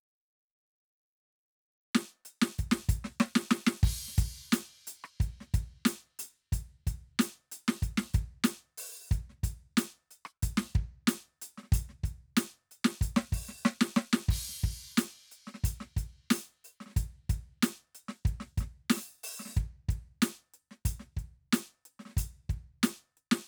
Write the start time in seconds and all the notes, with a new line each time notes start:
1.95 snare
2.25 closed hi-hat
2.42 snare
2.58 closed hi-hat, kick
2.71 snare
2.89 closed hi-hat, kick
3.04 snare
3.20 snare
3.35 snare
3.51 snare
3.67 snare
3.83 kick, crash
4.08 snare
4.18 closed hi-hat, kick
4.52 closed hi-hat, snare
4.87 closed hi-hat
5.04 cross-stick
5.20 closed hi-hat, kick
5.40 snare
5.54 closed hi-hat, kick
5.85 closed hi-hat, snare
6.19 closed hi-hat
6.52 closed hi-hat, kick
6.87 closed hi-hat, kick
7.19 closed hi-hat, snare
7.52 closed hi-hat
7.68 snare
7.82 closed hi-hat, kick
7.97 snare
8.14 closed hi-hat, kick
8.44 open hi-hat, snare
8.78 open hi-hat
9.09 closed hi-hat, kick, hi-hat pedal
9.29 snare
9.35 snare
9.43 closed hi-hat, kick
9.77 closed hi-hat, snare
10.11 closed hi-hat
10.25 cross-stick
10.43 closed hi-hat, kick
10.57 snare
10.70 snare
10.75 kick, closed hi-hat
11.07 closed hi-hat, snare
11.42 closed hi-hat
11.58 snare
11.63 snare
11.72 closed hi-hat, kick
11.89 snare
12.04 closed hi-hat, kick
12.37 closed hi-hat, snare
12.71 closed hi-hat
12.84 snare
13.01 closed hi-hat, kick
13.16 snare
13.30 open hi-hat, kick, snare
13.48 snare
13.63 snare, hi-hat pedal
13.81 snare
13.96 snare
14.13 snare
14.29 kick, crash
14.49 snare
14.62 kick, closed hi-hat
14.97 closed hi-hat, snare
15.31 closed hi-hat
15.47 snare
15.54 snare
15.64 closed hi-hat, kick
15.80 snare
15.96 closed hi-hat, kick
16.30 open hi-hat, snare
16.64 open hi-hat, hi-hat pedal
16.80 snare
16.86 snare
16.89 snare
16.96 closed hi-hat, kick
17.29 closed hi-hat, kick
17.63 closed hi-hat, snare
17.95 closed hi-hat
18.08 snare
18.25 kick, closed hi-hat
18.40 snare
18.57 closed hi-hat, kick, snare
18.90 open hi-hat, snare
18.97 snare
19.23 open hi-hat
19.39 snare
19.45 snare
19.48 snare
19.51 snare, hi-hat pedal
19.57 kick, closed hi-hat
19.89 kick, closed hi-hat
20.22 closed hi-hat, snare
20.54 closed hi-hat
20.71 snare
20.85 closed hi-hat, kick
21.00 snare
21.17 kick, closed hi-hat
21.53 closed hi-hat, snare
21.85 closed hi-hat
21.99 snare
22.05 snare
22.09 snare
22.17 closed hi-hat, kick
22.49 kick, closed hi-hat
22.83 closed hi-hat, snare
23.17 closed hi-hat
23.31 snare